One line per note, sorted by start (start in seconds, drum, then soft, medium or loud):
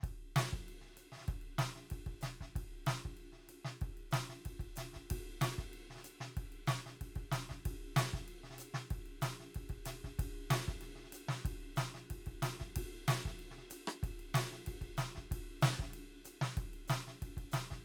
0.00 kick medium
0.00 snare soft
0.00 ride medium
0.36 snare loud
0.36 hi-hat pedal medium
0.36 ride loud
0.53 kick medium
0.68 ride soft
0.81 snare soft
0.85 snare soft
0.89 snare soft
0.92 snare soft
0.97 hi-hat pedal soft
0.97 ride medium
1.12 snare soft
1.17 snare soft
1.21 snare soft
1.28 kick medium
1.28 ride medium
1.41 ride soft
1.58 snare loud
1.58 hi-hat pedal medium
1.58 ride medium
1.75 snare soft
1.83 snare soft
1.90 kick medium
1.90 ride medium
2.06 kick soft
2.06 ride soft
2.21 snare medium
2.21 hi-hat pedal medium
2.21 ride medium
2.41 kick soft
2.41 snare soft
2.56 kick medium
2.56 ride medium
2.87 snare loud
2.87 hi-hat pedal medium
2.87 ride medium
3.05 kick soft
3.13 snare soft
3.13 ride soft
3.32 snare soft
3.38 snare soft
3.43 snare soft
3.47 snare soft
3.47 hi-hat pedal soft
3.47 ride medium
3.65 snare medium
3.81 kick medium
3.81 ride soft
3.97 ride soft
4.11 snare loud
4.11 hi-hat pedal medium
4.11 ride medium
4.29 snare soft
4.45 kick soft
4.45 ride medium
4.59 kick soft
4.59 ride soft
4.76 snare medium
4.76 hi-hat pedal medium
4.76 ride medium
4.93 kick soft
4.93 snare soft
5.10 kick medium
5.10 ride loud
5.41 snare loud
5.41 hi-hat pedal medium
5.41 ride loud
5.58 kick medium
5.58 snare soft
5.73 ride soft
5.90 snare soft
5.95 snare soft
5.98 snare soft
6.04 hi-hat pedal medium
6.04 ride medium
6.20 snare medium
6.37 kick medium
6.37 ride medium
6.52 ride soft
6.67 snare loud
6.67 hi-hat pedal medium
6.67 ride medium
6.86 snare soft
7.01 kick soft
7.01 ride medium
7.16 kick medium
7.16 ride soft
7.32 snare medium
7.32 hi-hat pedal medium
7.32 ride medium
7.49 kick soft
7.49 snare soft
7.65 kick medium
7.65 ride medium
7.96 snare loud
7.96 hi-hat pedal medium
7.96 ride loud
8.13 kick medium
8.13 snare soft
8.25 snare soft
8.25 ride soft
8.43 snare soft
8.50 snare soft
8.52 snare soft
8.54 snare soft
8.55 snare soft
8.55 hi-hat pedal loud
8.55 ride medium
8.74 snare medium
8.91 kick medium
8.91 ride medium
9.06 ride soft
9.22 snare medium
9.22 hi-hat pedal medium
9.22 ride medium
9.40 snare soft
9.55 kick soft
9.55 ride medium
9.69 kick soft
9.69 ride soft
9.85 snare medium
9.85 hi-hat pedal medium
9.85 ride medium
10.04 kick soft
10.04 snare soft
10.19 kick medium
10.19 ride medium
10.50 snare loud
10.50 hi-hat pedal medium
10.50 ride loud
10.68 kick medium
10.68 snare soft
10.80 snare soft
10.80 hi-hat pedal soft
10.80 ride medium
10.95 snare soft
11.04 snare soft
11.06 snare soft
11.13 hi-hat pedal medium
11.13 ride medium
11.29 snare medium
11.45 kick medium
11.45 ride medium
11.61 ride soft
11.76 snare medium
11.76 hi-hat pedal medium
11.76 ride medium
11.94 snare soft
12.10 kick soft
12.10 ride medium
12.26 kick soft
12.26 ride soft
12.42 snare medium
12.42 hi-hat pedal medium
12.42 ride medium
12.59 kick soft
12.59 snare soft
12.76 kick medium
12.76 ride loud
13.08 snare loud
13.08 hi-hat pedal medium
13.08 ride loud
13.25 kick medium
13.25 snare soft
13.39 ride soft
13.51 snare soft
13.58 snare soft
13.64 snare soft
13.67 snare soft
13.70 snare soft
13.70 hi-hat pedal medium
13.70 ride medium
13.87 cross-stick medium
14.03 kick medium
14.03 ride medium
14.19 ride soft
14.34 snare loud
14.34 hi-hat pedal medium
14.34 ride loud
14.52 snare soft
14.66 kick soft
14.66 ride medium
14.81 kick soft
14.81 ride soft
14.97 snare medium
14.97 hi-hat pedal medium
14.97 ride medium
15.15 kick soft
15.15 snare soft
15.31 kick medium
15.31 ride medium
15.62 snare loud
15.62 hi-hat pedal medium
15.62 ride medium
15.79 kick medium
15.79 snare soft
15.89 snare soft
15.93 ride medium
16.13 snare soft
16.15 snare soft
16.18 snare soft
16.25 hi-hat pedal medium
16.25 ride medium
16.41 snare medium
16.57 kick medium
16.57 ride medium
16.73 ride soft
16.88 snare loud
16.88 hi-hat pedal medium
16.88 ride medium
17.07 snare soft
17.22 kick soft
17.22 ride medium
17.37 kick soft
17.37 ride soft
17.52 snare medium
17.52 hi-hat pedal medium
17.52 ride medium
17.70 kick soft
17.70 snare soft